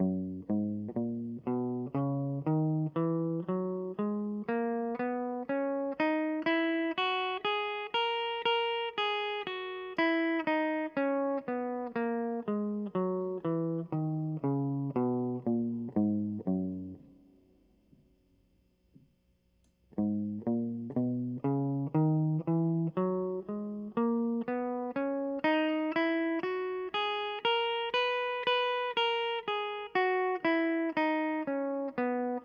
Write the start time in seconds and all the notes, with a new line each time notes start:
0.03 F#2
0.52 G#2
0.98 A#2
1.49 B2
1.96 C#3
2.48 D#3
2.98 E3
3.50 F#3
4.00 G#3
4.50 A#3
5.00 B3
5.50 C#4
6.01 D#4
6.47 E4
6.99 F#4
7.46 G#4
7.95 A#4
8.46 A#4
8.99 G#4
9.48 F#4
9.99 E4
10.48 D#4
10.98 C#4
11.49 B3
11.97 A#3
12.49 G#3
12.96 F#3
13.46 E3
13.94 D#3
14.46 C#3
14.99 B2
15.49 A#2
15.98 G#2
16.50 F#2
20.00 G#2
20.49 A#2
20.98 B2
21.46 C#3
21.97 D#3
22.49 E3
22.98 F#3
23.50 G#3
23.98 A#3
24.49 B3
24.97 C#4
25.45 D#4
25.97 E4
26.44 F#4
26.95 G#4
27.46 A#4
27.95 B4
28.48 B4
28.98 A#4
29.48 G#4
29.96 F#4
30.46 E4
30.98 D#4
31.48 C#4
31.99 B3